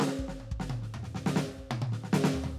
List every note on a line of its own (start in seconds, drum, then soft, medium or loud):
0.00 snare loud
0.08 snare medium
0.19 kick medium
0.28 snare medium
0.40 high tom medium
0.51 kick medium
0.60 snare medium
0.70 closed hi-hat soft
0.70 high tom loud
0.82 kick soft
0.82 snare soft
0.94 mid tom medium
1.03 snare soft
1.15 snare medium
1.26 snare loud
1.36 snare loud
1.48 kick soft
1.58 kick soft
1.71 high tom loud
1.82 high tom loud
1.92 snare medium
2.04 snare medium
2.13 snare loud
2.24 snare loud
2.33 floor tom medium
2.44 floor tom loud